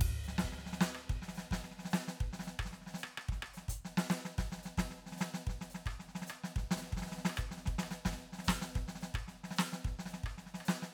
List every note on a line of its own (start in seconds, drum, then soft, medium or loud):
0.01 kick medium
0.01 ride loud
0.08 kick soft
0.14 kick soft
0.24 hi-hat pedal soft
0.28 snare soft
0.38 snare medium
0.44 kick soft
0.52 snare soft
0.58 snare soft
0.63 snare soft
0.66 snare soft
0.73 snare soft
0.81 snare loud
0.81 hi-hat pedal medium
0.95 cross-stick medium
1.10 kick soft
1.10 snare soft
1.17 kick soft
1.22 snare soft
1.28 snare soft
1.34 snare soft
1.34 hi-hat pedal soft
1.38 snare medium
1.51 kick soft
1.51 snare medium
1.64 snare soft
1.71 snare soft
1.77 snare soft
1.79 snare soft
1.85 snare soft
1.91 snare medium
1.91 hi-hat pedal medium
2.08 snare medium
2.21 kick soft
2.21 snare soft
2.27 kick soft
2.33 snare soft
2.39 snare soft
2.39 hi-hat pedal soft
2.47 snare soft
2.59 kick soft
2.59 cross-stick medium
2.65 snare soft
2.73 snare soft
2.82 snare soft
2.87 snare soft
2.94 snare soft
2.99 hi-hat pedal medium
3.04 cross-stick medium
3.18 cross-stick medium
3.29 kick soft
3.29 snare soft
3.35 kick soft
3.43 cross-stick medium
3.48 cross-stick soft
3.54 snare soft
3.54 hi-hat pedal medium
3.69 closed hi-hat loud
3.69 kick soft
3.85 snare soft
3.98 snare medium
4.09 snare medium
4.09 hi-hat pedal medium
4.25 snare soft
4.38 kick soft
4.38 snare medium
4.52 snare soft
4.58 snare soft
4.63 snare soft
4.63 hi-hat pedal medium
4.78 kick soft
4.78 snare medium
4.91 snare soft
4.98 snare soft
5.05 snare soft
5.12 snare soft
5.17 snare soft
5.17 hi-hat pedal medium
5.21 snare medium
5.34 snare medium
5.47 kick soft
5.47 snare soft
5.54 kick soft
5.61 snare soft
5.70 hi-hat pedal medium
5.75 snare soft
5.86 kick soft
5.86 cross-stick medium
6.00 snare soft
6.08 snare soft
6.15 snare soft
6.22 snare soft
6.27 cross-stick medium
6.27 hi-hat pedal medium
6.44 snare medium
6.56 kick soft
6.56 snare soft
6.62 kick soft
6.71 snare medium
6.77 snare soft
6.77 hi-hat pedal medium
6.82 snare soft
6.92 kick soft
6.92 snare soft
6.97 snare medium
7.02 snare medium
7.06 snare soft
7.12 snare soft
7.18 snare soft
7.25 snare medium
7.30 cross-stick medium
7.36 kick soft
7.36 cross-stick medium
7.36 hi-hat pedal medium
7.45 kick soft
7.51 snare soft
7.57 snare soft
7.66 kick soft
7.66 snare soft
7.74 kick soft
7.79 snare medium
7.83 cross-stick medium
7.91 snare soft
7.91 hi-hat pedal soft
8.05 kick soft
8.05 snare medium
8.12 snare soft
8.18 snare soft
8.25 snare soft
8.32 snare soft
8.39 snare soft
8.45 kick soft
8.45 snare loud
8.45 hi-hat pedal medium
8.54 kick soft
8.62 snare medium
8.76 kick soft
8.76 snare soft
8.82 kick soft
8.88 snare soft
8.95 snare soft
9.01 snare soft
9.01 hi-hat pedal soft
9.14 kick soft
9.14 cross-stick medium
9.20 kick soft
9.28 snare soft
9.35 snare soft
9.42 snare soft
9.44 snare soft
9.51 snare soft
9.56 snare medium
9.56 hi-hat pedal medium
9.73 snare soft
9.85 kick soft
9.85 snare soft
9.91 kick soft
9.99 snare soft
10.06 snare soft
10.06 hi-hat pedal soft
10.14 snare soft
10.24 kick soft
10.24 cross-stick medium
10.38 snare soft
10.46 snare soft
10.54 snare soft
10.61 cross-stick soft
10.65 snare medium
10.65 hi-hat pedal medium
10.82 snare soft